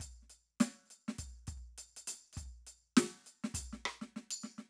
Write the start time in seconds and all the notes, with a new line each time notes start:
0.01 kick, percussion
0.23 snare
0.31 percussion
0.61 snare, percussion
0.87 percussion
0.91 percussion
1.09 snare
1.20 kick, percussion
1.48 kick, percussion
1.58 kick
1.79 percussion
1.98 percussion
2.08 percussion
2.34 kick, percussion
2.39 percussion
2.44 kick
2.47 kick
2.68 percussion
2.98 snare, percussion
3.25 percussion
3.27 percussion
3.45 snare
3.55 kick, percussion
3.61 kick
3.74 snare
3.87 high tom
4.02 snare
4.17 snare
4.32 percussion
4.45 snare
4.59 snare